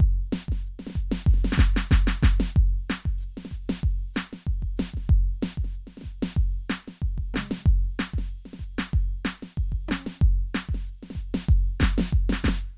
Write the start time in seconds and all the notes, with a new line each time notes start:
0.01 kick, crash
0.33 snare, hi-hat pedal, crash
0.49 kick, snare
0.64 hi-hat pedal, crash
0.80 snare
0.88 snare
0.91 snare
0.95 kick, hi-hat pedal, crash
1.12 snare
1.27 kick, snare, hi-hat pedal, crash
1.35 snare
1.38 snare
1.45 snare
1.53 snare
1.59 kick, snare, hi-hat pedal
1.77 snare
1.91 kick, snare, hi-hat pedal
2.08 snare
2.24 kick, snare, hi-hat pedal
2.41 snare
2.57 kick, hi-hat pedal, crash
2.89 snare, hi-hat pedal
3.06 kick
3.19 hi-hat pedal, crash
3.38 snare
3.46 snare
3.52 kick, hi-hat pedal, crash
3.70 snare
3.84 kick, crash
3.99 crash
4.10 kick
4.15 snare, hi-hat pedal, crash
4.34 snare
4.47 kick, crash
4.62 kick, crash
4.78 snare, hi-hat pedal, crash
4.95 kick, snare
5.10 kick, crash
5.38 kick
5.43 snare, hi-hat pedal, crash
5.58 kick
5.65 snare
5.73 hi-hat pedal, crash
5.88 snare
5.98 snare
6.02 kick, snare, hi-hat pedal
6.06 crash
6.23 snare
6.37 kick, crash
6.53 crash
6.70 snare, hi-hat pedal, crash
6.88 snare
7.02 kick, crash
7.19 kick
7.35 snare, hi-hat pedal, mid tom
7.52 snare
7.67 kick, crash
7.99 snare, hi-hat pedal, crash
8.14 kick
8.19 snare
8.30 crash
8.46 snare
8.54 snare
8.60 kick, hi-hat pedal, crash
8.79 snare
8.94 kick, crash
9.08 crash
9.23 kick, snare, hi-hat pedal, crash
9.43 snare
9.58 kick, crash
9.73 kick
9.89 snare, hi-hat pedal, high tom
10.07 snare
10.22 kick, crash
10.55 snare, hi-hat pedal, crash
10.70 kick
10.75 snare
10.86 hi-hat pedal, crash
11.03 snare
11.11 snare
11.16 kick, hi-hat pedal, crash
11.35 snare
11.49 kick, hi-hat pedal, crash
11.81 kick, snare
11.84 snare
11.99 snare
12.00 snare
12.13 kick, snare, hi-hat pedal
12.30 snare
12.33 snare
12.45 kick, snare, hi-hat pedal
12.49 snare